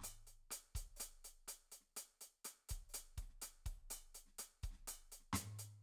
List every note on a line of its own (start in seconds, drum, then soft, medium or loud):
0.01 open hi-hat medium
0.01 cross-stick soft
0.01 snare soft
0.01 hi-hat pedal soft
0.01 mid tom soft
0.28 closed hi-hat soft
0.51 closed hi-hat medium
0.51 cross-stick soft
0.51 snare soft
0.76 closed hi-hat soft
0.76 kick soft
0.97 closed hi-hat medium
0.97 cross-stick soft
0.97 hi-hat pedal soft
1.25 closed hi-hat soft
1.49 closed hi-hat medium
1.49 cross-stick soft
1.72 closed hi-hat soft
1.81 snare soft
1.97 closed hi-hat medium
1.97 cross-stick soft
2.22 closed hi-hat soft
2.45 closed hi-hat medium
2.45 cross-stick soft
2.70 closed hi-hat soft
2.70 kick soft
2.90 hi-hat pedal soft
2.95 closed hi-hat medium
2.95 cross-stick soft
3.18 kick soft
3.18 snare soft
3.18 closed hi-hat soft
3.30 snare soft
3.42 closed hi-hat medium
3.42 cross-stick soft
3.67 kick soft
3.67 closed hi-hat soft
3.91 open hi-hat medium
3.91 cross-stick soft
4.15 closed hi-hat soft
4.26 snare soft
4.28 snare soft
4.39 closed hi-hat medium
4.39 cross-stick soft
4.64 closed hi-hat soft
4.64 kick soft
4.71 snare soft
4.73 snare soft
4.88 open hi-hat medium
4.88 cross-stick soft
5.13 closed hi-hat soft
5.21 snare soft
5.34 closed hi-hat medium
5.34 snare medium
5.34 hi-hat pedal soft
5.34 mid tom medium
5.60 closed hi-hat medium